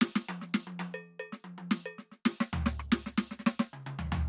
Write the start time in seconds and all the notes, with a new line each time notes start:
0.01 snare
0.16 snare
0.29 high tom
0.42 snare
0.54 snare
0.67 high tom
0.79 high tom
0.94 percussion
1.20 percussion
1.32 snare
1.44 high tom
1.58 high tom
1.71 snare
1.86 percussion
1.98 snare
2.12 snare
2.25 snare
2.40 snare
2.53 floor tom
2.66 snare
2.79 cross-stick
2.92 snare
3.06 snare
3.18 snare
3.31 snare
3.39 snare
3.46 snare
3.59 snare
3.73 mid tom
3.86 mid tom
3.99 floor tom
4.12 floor tom